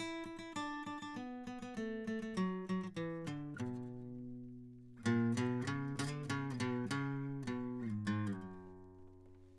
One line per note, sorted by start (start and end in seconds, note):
0.00 0.24 E4
0.25 0.40 E4
0.40 0.55 E4
0.57 0.86 D4
0.88 1.01 D4
1.04 1.33 D4
1.16 1.47 B3
1.49 1.61 B3
1.54 2.08 B3
1.64 1.77 B3
1.79 2.07 A3
2.09 2.22 A3
2.24 2.48 A3
2.38 2.68 F#3
2.70 2.91 F#3
2.98 3.07 E3
3.07 3.35 E3
3.28 3.58 D3
3.61 5.04 B2
5.07 5.38 A#2
5.39 5.69 B2
5.69 5.98 C#3
5.69 6.54 B3
6.01 6.10 C#3
6.10 6.30 D3
6.31 6.52 C#3
6.52 6.91 B2
6.92 7.44 C#3
7.44 8.07 B2
8.08 8.28 G#2
8.29 9.58 F#2